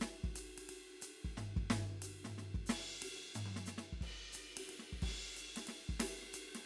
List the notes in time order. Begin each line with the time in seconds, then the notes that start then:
0.01 snare, ride
0.24 kick
0.35 hi-hat pedal, ride
0.58 ride
0.69 ride
1.01 hi-hat pedal, ride
1.24 kick
1.37 snare, floor tom
1.56 kick
1.70 snare, floor tom
2.02 hi-hat pedal, ride
2.24 snare, floor tom
2.38 snare, floor tom
2.54 kick
2.66 snare, hi-hat pedal
2.70 ride
3.02 ride
3.34 floor tom, hi-hat pedal
3.46 high tom
3.56 snare
3.66 snare, hi-hat pedal
3.78 snare
3.92 kick
4.01 kick, crash
4.32 hi-hat pedal, ride
4.57 ride
4.69 ride
4.79 snare
4.92 kick
5.02 kick, ride
5.36 hi-hat pedal, ride
5.56 snare, ride
5.67 snare, ride
5.89 kick
5.99 snare, ride
6.22 snare
6.33 hi-hat pedal, ride
6.55 snare, ride